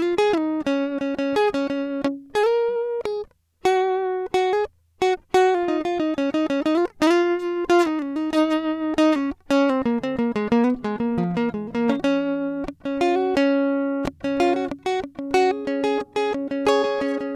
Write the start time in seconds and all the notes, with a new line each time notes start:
0.00 F4
0.20 G#4
0.35 D#4
0.68 C#4
1.03 C#4
1.20 C#4
1.37 G#4
1.55 C#4
1.72 C#4
2.36 G#4
2.48 A#4
3.06 G#4
3.66 F#4
4.35 F#4
4.54 G#4
5.03 F#4
5.35 F#4
5.56 F4
5.70 D#4
5.86 F4
6.01 D#4
6.19 C#4
6.36 D#4
6.51 C#4
6.67 D#4
6.77 F4
7.03 F4
7.71 F4
7.82 D#4
8.00 C#4
8.17 D#4
8.35 D#4
8.99 D#4
9.14 C#4
9.52 C#4
9.87 A#3
10.05 C4
10.20 A#3
10.37 G#3
10.53 B3
10.86 G#3
11.02 A#3
11.19 F3
11.38 A#3
11.56 G#3
11.76 A#3
11.91 C#4
12.05 C#4
12.70 C#4
12.87 C#4
13.02 F4
13.17 F#4
13.38 C#4
14.06 C#4
14.26 C#4
14.41 F4
14.55 F#4
14.73 C#4
14.87 F#4
15.05 C#4
15.20 C#4
15.35 F#4
15.52 G#4
15.69 C#4
15.85 G#4
15.99 C#4
16.17 C#4 G#4
16.36 C#4
16.53 C#4
16.68 G#4 C#5
16.84 G#4
17.02 C#4 G#4
17.19 C#4